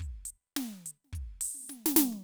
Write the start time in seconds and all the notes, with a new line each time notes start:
0.01 closed hi-hat, kick
0.26 closed hi-hat
0.57 snare, closed hi-hat
0.87 closed hi-hat
1.05 snare
1.14 kick, closed hi-hat
1.42 open hi-hat
1.55 snare
1.60 snare
1.64 snare
1.69 snare, hi-hat pedal
1.87 snare
1.97 snare
2.13 snare